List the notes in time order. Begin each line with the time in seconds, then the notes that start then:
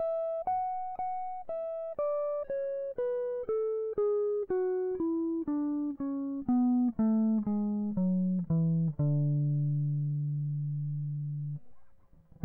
0.00 E5
0.47 F#5
0.99 F#5
1.49 E5
1.99 D5
2.50 C#5
2.98 B4
3.49 A4
3.98 G#4
4.50 F#4
5.00 E4
5.48 D4
6.00 C#4
6.49 B3
6.99 A3
7.47 G#3
7.98 F#3
8.51 E3
9.00 D3